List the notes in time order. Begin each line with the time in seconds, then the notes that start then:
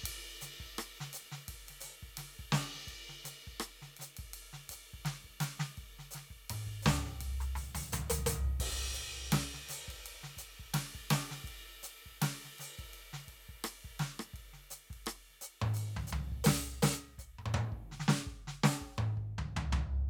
0.01 kick, snare
0.07 ride
0.42 snare, hi-hat pedal, ride
0.61 kick
0.79 cross-stick, ride
1.01 snare
1.14 kick, hi-hat pedal, ride
1.33 snare
1.49 kick, ride
1.69 snare, ride
1.81 snare, hi-hat pedal, ride
2.03 kick
2.18 snare, ride
2.40 kick
2.53 snare, ride
2.76 snare
2.88 kick, ride
3.10 snare
3.25 snare, hi-hat pedal, ride
3.48 kick, ride
3.61 cross-stick, ride
3.83 snare
3.98 snare, ride
4.02 hi-hat pedal
4.18 kick, ride
4.34 ride
4.54 snare
4.70 kick, hi-hat pedal, ride
4.94 kick
5.06 snare, ride
5.25 kick
5.41 snare, hi-hat pedal, ride
5.60 snare
5.78 kick, ride
6.00 snare
6.12 snare, hi-hat pedal, ride
6.31 kick
6.51 high tom, ride
6.67 kick
6.83 snare, floor tom, hi-hat pedal
7.06 snare
7.22 kick, ride
7.41 open hi-hat, floor tom
7.56 open hi-hat, floor tom
7.76 open hi-hat, floor tom
7.93 open hi-hat, floor tom
8.11 open hi-hat, floor tom
8.27 open hi-hat, floor tom
8.46 kick
8.61 kick, crash, ride
8.94 hi-hat pedal
9.33 snare, ride
9.54 snare
9.70 snare, hi-hat pedal, ride
9.89 kick, ride
10.07 ride
10.24 snare
10.38 kick, hi-hat pedal, ride
10.60 kick
10.75 snare, ride
10.96 kick
11.11 snare, ride
11.32 snare
11.45 kick, ride
11.84 hi-hat pedal, ride
12.07 kick
12.22 snare, ride
12.45 snare
12.59 snare, hi-hat pedal, ride
12.79 kick, ride
12.94 ride
13.14 snare
13.29 kick, ride
13.50 kick
13.65 cross-stick, ride
13.85 kick
14.00 snare, ride
14.20 cross-stick
14.34 kick, ride
14.54 snare
14.71 snare, hi-hat pedal, ride
14.91 kick, ride
15.07 cross-stick, ride
15.30 snare
15.42 hi-hat pedal, ride
15.62 high tom
15.75 hi-hat pedal, ride
15.97 floor tom
16.08 hi-hat pedal
16.14 floor tom
16.33 kick
16.45 open hi-hat, snare
16.83 open hi-hat, snare
17.19 kick, hi-hat pedal
17.39 high tom
17.47 high tom
17.55 high tom
17.73 kick
17.92 snare
18.01 snare
18.09 snare
18.27 kick
18.48 snare
18.64 snare
18.82 kick
18.99 closed hi-hat, high tom
19.18 kick
19.39 floor tom
19.57 floor tom
19.73 floor tom